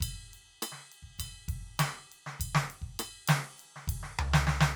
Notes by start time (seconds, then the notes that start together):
0.01 kick, hi-hat pedal, ride bell
0.09 kick
0.34 ride
0.63 cross-stick, hi-hat pedal, ride bell
0.72 snare
0.92 ride
1.03 kick
1.18 kick, snare, hi-hat pedal, ride bell
1.49 kick, ride
1.60 kick
1.78 snare, hi-hat pedal, ride bell
1.88 snare
2.12 ride
2.27 snare
2.40 kick, hi-hat pedal, ride bell
2.46 kick
2.55 snare
2.71 ride
2.82 kick
2.88 kick
3.00 cross-stick, hi-hat pedal, ride bell
3.28 snare, ride
3.35 snare
3.58 hi-hat pedal, ride
3.77 snare
3.88 kick, ride
3.96 kick
3.99 kick
4.04 snare
4.19 hi-hat pedal, floor tom
4.34 snare
4.48 snare
4.61 snare